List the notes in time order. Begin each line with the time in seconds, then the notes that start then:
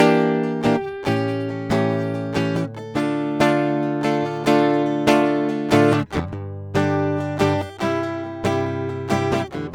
0.00 E3 A#3 D4 G4
0.45 G4
0.66 E3 A#3 D4 G4
1.08 A2 E3 C#4 G4
1.52 E3 C#4 G4
1.72 A2 E3 C#4 G4
2.16 C#4 G4
2.34 C#4 G4 A4
2.39 A2 E3
2.57 E3 C#4 G4
2.66 D3
2.76 D#4 A4
2.96 D3 A3 D4 F4 A4
3.42 D3 A3 D4 F4 A4
3.84 A3
4.05 D3 A3 D4 F4 A4
4.25 D3 A3 D4 F4
4.29 A4
4.48 D3 A3 D4 F4 A4
4.84 A4
4.89 D4
5.08 D3 A3 D4 F4 A4
5.24 A4
5.50 A3 D4 F4 A4
5.73 A2 D3 A3 D4 F4 A4
5.93 A2 D3 A3 D4
6.13 C#4
6.17 E2 D3 G3
6.35 G2
6.76 G2 D3 G3 D4 G4
7.19 G2 G3 D4
7.42 G2 D3 G3 D4 G4
7.60 D4 G4
7.81 C3 G3 E4 G4
7.85 G2
8.05 E4
8.24 E4 G4
8.46 G2 C3 G3 E4 G4
8.66 G4
8.91 E4 G4
9.11 G2 C3 G3 E4 G4
9.33 G2 C3 G3 G4
9.56 E2 A2 D3 G3